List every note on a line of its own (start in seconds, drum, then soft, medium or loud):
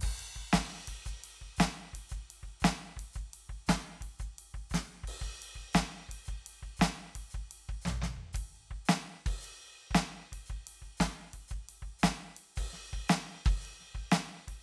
0.01 kick medium
0.01 hi-hat pedal medium
0.01 crash medium
0.20 ride medium
0.36 kick soft
0.52 kick medium
0.52 snare loud
0.52 hi-hat pedal medium
0.52 crash medium
0.88 kick soft
0.88 ride medium
1.06 kick medium
1.06 hi-hat pedal medium
1.24 ride medium
1.42 kick soft
1.57 kick medium
1.57 snare loud
1.57 hi-hat pedal medium
1.57 ride medium
1.94 kick soft
1.94 ride medium
2.10 kick medium
2.10 hi-hat pedal medium
2.31 ride medium
2.43 kick soft
2.60 kick medium
2.60 hi-hat pedal medium
2.65 snare loud
2.65 ride medium
2.97 kick soft
2.97 ride medium
3.14 kick medium
3.14 hi-hat pedal medium
3.34 ride medium
3.50 kick soft
3.67 kick medium
3.67 snare loud
3.67 hi-hat pedal medium
3.67 ride medium
4.01 kick soft
4.01 ride medium
4.19 kick medium
4.19 hi-hat pedal medium
4.39 ride medium
4.54 kick soft
4.70 kick medium
4.70 hi-hat pedal medium
4.74 snare loud
4.74 ride medium
5.04 kick medium
5.04 crash medium
5.22 kick medium
5.22 hi-hat pedal soft
5.42 ride medium
5.56 kick soft
5.73 kick medium
5.73 snare loud
5.73 hi-hat pedal medium
5.73 ride medium
6.09 kick soft
6.09 ride medium
6.26 kick medium
6.26 hi-hat pedal medium
6.47 ride medium
6.63 kick soft
6.77 kick medium
6.77 hi-hat pedal medium
6.82 snare loud
6.82 ride medium
7.16 kick soft
7.16 ride medium
7.30 hi-hat pedal medium
7.35 kick medium
7.52 ride medium
7.69 kick medium
7.82 floor tom loud
7.82 hi-hat pedal medium
7.87 snare loud
8.02 snare medium
8.02 floor tom medium
8.17 kick soft
8.33 kick medium
8.33 hi-hat pedal medium
8.33 ride medium
8.55 hi-hat pedal soft
8.71 kick soft
8.86 snare loud
8.86 hi-hat pedal medium
8.90 ride medium
9.26 kick medium
9.26 crash medium
9.41 hi-hat pedal medium
9.41 ride medium
9.64 hi-hat pedal soft
9.91 kick medium
9.91 hi-hat pedal medium
9.95 snare loud
9.95 ride medium
10.32 kick soft
10.32 ride medium
10.46 kick medium
10.46 hi-hat pedal soft
10.67 ride medium
10.82 kick soft
10.97 kick medium
10.97 snare loud
10.97 hi-hat pedal medium
11.02 ride medium
11.34 kick soft
11.34 ride medium
11.48 kick medium
11.48 hi-hat pedal medium
11.69 hi-hat pedal soft
11.69 ride medium
11.82 kick soft
11.99 hi-hat pedal medium
12.03 kick soft
12.03 snare loud
12.03 ride medium
12.37 ride medium
12.56 kick medium
12.56 hi-hat pedal medium
12.56 crash medium
12.73 snare soft
12.93 kick medium
13.08 snare loud
13.08 hi-hat pedal medium
13.08 ride medium
13.46 kick loud
13.46 crash medium
13.61 hi-hat pedal medium
13.65 ride soft
13.81 snare soft
13.95 kick medium
14.12 snare loud
14.12 hi-hat pedal medium
14.12 ride medium
14.48 kick soft
14.48 ride medium